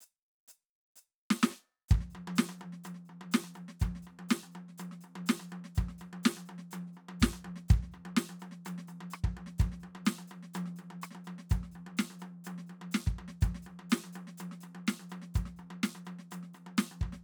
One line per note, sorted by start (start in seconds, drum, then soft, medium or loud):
0.01 hi-hat pedal medium
0.48 hi-hat pedal medium
0.96 hi-hat pedal medium
1.30 snare loud
1.41 snare loud
1.41 hi-hat pedal medium
1.50 snare soft
1.89 kick loud
1.89 hi-hat pedal medium
1.89 high tom medium
2.01 snare soft
2.10 hi-hat pedal soft
2.15 high tom medium
2.27 high tom medium
2.36 snare loud
2.36 hi-hat pedal medium
2.49 high tom medium
2.58 hi-hat pedal soft
2.58 high tom medium
2.73 snare soft
2.84 hi-hat pedal medium
2.84 high tom medium
2.94 snare soft
3.05 hi-hat pedal soft
3.09 high tom soft
3.21 high tom medium
3.31 snare loud
3.31 hi-hat pedal medium
3.44 high tom soft
3.54 hi-hat pedal soft
3.54 high tom medium
3.68 snare soft
3.80 kick medium
3.80 hi-hat pedal medium
3.80 high tom medium
3.95 snare soft
4.02 hi-hat pedal soft
4.07 high tom soft
4.19 high tom medium
4.29 snare loud
4.29 hi-hat pedal medium
4.43 high tom soft
4.52 hi-hat pedal soft
4.52 high tom medium
4.68 snare soft
4.78 hi-hat pedal medium
4.78 high tom medium
4.91 snare soft
5.01 hi-hat pedal soft
5.01 high tom soft
5.16 high tom medium
5.26 snare loud
5.26 hi-hat pedal medium
5.40 high tom medium
5.49 hi-hat pedal soft
5.49 high tom medium
5.64 snare soft
5.75 kick medium
5.75 hi-hat pedal medium
5.75 high tom medium
5.88 snare soft
5.98 hi-hat pedal soft
5.98 high tom medium
6.13 high tom medium
6.23 snare loud
6.23 hi-hat pedal medium
6.37 high tom medium
6.45 hi-hat pedal soft
6.45 high tom medium
6.58 snare soft
6.71 hi-hat pedal medium
6.71 high tom medium
6.87 snare soft
6.93 hi-hat pedal soft
6.97 high tom soft
7.09 high tom medium
7.20 kick medium
7.20 snare loud
7.20 hi-hat pedal medium
7.33 high tom medium
7.45 kick soft
7.45 high tom medium
7.56 snare soft
7.69 kick loud
7.69 hi-hat pedal medium
7.69 high tom medium
7.83 snare soft
7.92 hi-hat pedal soft
7.92 high tom soft
8.05 high tom medium
8.17 snare loud
8.17 hi-hat pedal medium
8.29 high tom medium
8.39 hi-hat pedal soft
8.39 high tom medium
8.51 snare soft
8.65 hi-hat pedal medium
8.65 high tom medium
8.78 snare soft
8.88 hi-hat pedal soft
8.88 high tom soft
9.01 high tom medium
9.10 cross-stick medium
9.10 hi-hat pedal medium
9.24 kick medium
9.24 high tom medium
9.37 high tom medium
9.46 snare soft
9.58 kick loud
9.58 hi-hat pedal medium
9.58 high tom medium
9.72 snare soft
9.80 hi-hat pedal soft
9.80 high tom medium
9.95 high tom medium
10.05 snare loud
10.05 hi-hat pedal medium
10.18 high tom medium
10.27 hi-hat pedal soft
10.27 high tom medium
10.43 snare soft
10.54 hi-hat pedal medium
10.54 high tom loud
10.66 snare soft
10.76 hi-hat pedal soft
10.76 high tom medium
10.90 high tom medium
11.02 cross-stick medium
11.02 hi-hat pedal medium
11.11 snare soft
11.11 high tom medium
11.24 hi-hat pedal soft
11.24 high tom medium
11.38 snare soft
11.50 kick medium
11.50 hi-hat pedal medium
11.50 high tom medium
11.63 snare soft
11.71 hi-hat pedal soft
11.71 high tom soft
11.87 high tom medium
11.97 snare loud
11.97 hi-hat pedal medium
12.10 high tom medium
12.19 hi-hat pedal soft
12.19 high tom medium
12.44 hi-hat pedal medium
12.44 high tom medium
12.58 snare soft
12.67 hi-hat pedal soft
12.67 high tom medium
12.81 high tom medium
12.91 snare medium
12.91 hi-hat pedal medium
13.06 kick medium
13.06 high tom medium
13.19 high tom medium
13.28 snare soft
13.41 kick loud
13.41 hi-hat pedal medium
13.41 high tom medium
13.55 snare soft
13.62 hi-hat pedal soft
13.66 high tom medium
13.79 high tom medium
13.90 snare loud
13.90 hi-hat pedal medium
14.04 high tom medium
14.13 hi-hat pedal medium
14.13 high tom medium
14.27 snare soft
14.38 hi-hat pedal medium
14.38 high tom medium
14.51 snare soft
14.61 hi-hat pedal medium
14.61 high tom soft
14.75 high tom medium
14.87 snare medium
14.87 hi-hat pedal medium
15.00 high tom medium
15.09 hi-hat pedal soft
15.09 high tom medium
15.22 snare soft
15.34 kick medium
15.34 hi-hat pedal medium
15.34 high tom medium
15.46 snare soft
15.56 hi-hat pedal soft
15.56 high tom soft
15.70 high tom medium
15.83 snare medium
15.83 hi-hat pedal medium
15.95 high tom medium
16.05 hi-hat pedal soft
16.05 high tom medium
16.19 snare soft
16.31 hi-hat pedal medium
16.31 high tom medium
16.43 snare soft
16.54 hi-hat pedal soft
16.54 high tom soft
16.66 high tom medium
16.77 snare loud
16.77 hi-hat pedal medium
16.91 high tom soft
16.99 kick medium
16.99 hi-hat pedal soft
17.03 high tom medium
17.12 snare soft